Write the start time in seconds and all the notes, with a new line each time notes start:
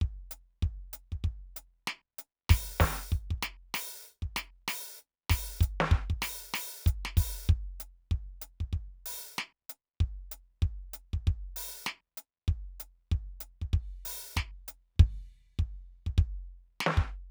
0.02 kick
0.32 closed hi-hat
0.63 kick
0.94 closed hi-hat
1.12 kick
1.24 kick
1.57 open hi-hat
1.88 snare, hi-hat pedal
2.19 closed hi-hat
2.50 open hi-hat, kick, snare
2.80 open hi-hat, kick, snare
3.11 kick, hi-hat pedal
3.31 kick
3.39 kick, hi-hat pedal
3.43 closed hi-hat, snare
3.75 open hi-hat, snare
4.06 hi-hat pedal
4.23 kick
4.37 open hi-hat, snare
4.68 open hi-hat, snare
4.99 hi-hat pedal
5.30 open hi-hat, kick, snare
5.60 closed hi-hat, kick, hi-hat pedal
5.81 snare
5.92 kick
6.10 kick
6.19 kick, snare, hi-hat pedal
6.23 open hi-hat
6.54 open hi-hat, snare
6.85 closed hi-hat, kick, hi-hat pedal
7.05 snare
7.17 open hi-hat, kick
7.48 kick, hi-hat pedal
7.80 closed hi-hat
8.12 kick
8.42 closed hi-hat
8.61 kick
8.73 kick
9.06 open hi-hat
9.38 snare, hi-hat pedal
9.70 closed hi-hat
10.01 kick
10.32 closed hi-hat
10.63 kick
10.94 closed hi-hat
11.14 kick
11.28 kick
11.57 open hi-hat
11.86 snare, hi-hat pedal
12.18 closed hi-hat
12.48 kick
12.80 closed hi-hat
13.12 kick
13.41 closed hi-hat
13.62 kick
13.74 kick
13.78 crash
14.06 open hi-hat
14.36 kick, snare, hi-hat pedal
14.68 closed hi-hat
14.96 kick
15.00 kick
15.04 crash
15.59 kick
16.07 kick
16.18 kick
16.81 snare
16.87 snare
16.98 kick